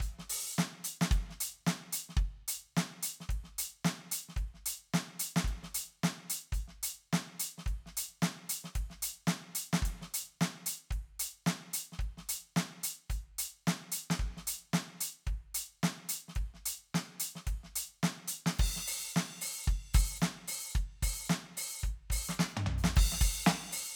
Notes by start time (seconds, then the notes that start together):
0.01 closed hi-hat, kick
0.20 snare
0.31 open hi-hat
0.55 snare, hi-hat pedal
0.85 closed hi-hat
1.02 snare
1.12 kick, closed hi-hat
1.31 snare
1.41 closed hi-hat
1.67 snare
1.94 closed hi-hat
2.10 snare
2.18 kick, closed hi-hat
2.49 closed hi-hat
2.78 snare
3.04 closed hi-hat
3.21 snare
3.30 kick, closed hi-hat
3.45 snare
3.59 closed hi-hat
3.86 snare
4.12 closed hi-hat
4.29 snare
4.37 kick, closed hi-hat
4.55 snare
4.67 closed hi-hat
4.95 snare
5.20 closed hi-hat
5.37 snare
5.45 kick, closed hi-hat
5.64 snare
5.75 closed hi-hat
6.04 snare
6.31 closed hi-hat
6.53 closed hi-hat, kick
6.69 snare
6.84 closed hi-hat
7.14 snare
7.41 closed hi-hat
7.59 snare
7.67 kick, closed hi-hat
7.87 snare
7.98 closed hi-hat
8.23 snare
8.50 closed hi-hat
8.65 snare
8.76 kick, closed hi-hat
8.91 snare
9.03 closed hi-hat
9.28 snare
9.56 closed hi-hat
9.74 snare
9.83 kick, closed hi-hat
10.02 snare
10.15 closed hi-hat
10.42 snare
10.67 closed hi-hat
10.92 kick, closed hi-hat
11.20 closed hi-hat
11.47 snare
11.74 closed hi-hat
11.93 snare
12.00 kick, closed hi-hat
12.18 snare
12.30 closed hi-hat
12.57 snare
12.84 closed hi-hat
13.11 closed hi-hat, kick
13.39 closed hi-hat
13.68 snare
13.93 closed hi-hat
14.11 snare
14.20 kick
14.38 snare
14.48 closed hi-hat
14.74 snare
15.02 closed hi-hat
15.28 kick, closed hi-hat
15.55 closed hi-hat
15.84 snare
16.10 closed hi-hat
16.29 snare
16.36 kick, closed hi-hat
16.55 snare
16.67 closed hi-hat
16.95 snare
17.21 closed hi-hat
17.36 snare
17.48 kick, closed hi-hat
17.64 snare
17.77 closed hi-hat
18.04 snare
18.29 closed hi-hat
18.47 snare
18.55 hi-hat pedal
18.60 kick, crash
18.77 snare
18.88 open hi-hat
19.12 hi-hat pedal
19.17 snare
19.42 open hi-hat
19.65 kick, hi-hat pedal
19.95 open hi-hat, kick
20.18 hi-hat pedal
20.23 snare
20.49 open hi-hat
20.73 kick, hi-hat pedal
21.03 open hi-hat, kick
21.27 snare, hi-hat pedal
21.58 open hi-hat
21.82 kick, hi-hat pedal
22.11 open hi-hat, kick
22.30 snare, hi-hat pedal
22.40 snare
22.50 hi-hat pedal
22.58 high tom
22.67 floor tom
22.79 hi-hat pedal
22.85 snare
22.97 kick, crash
23.13 snare
23.21 open hi-hat, kick
23.45 snare, hi-hat pedal
23.73 open hi-hat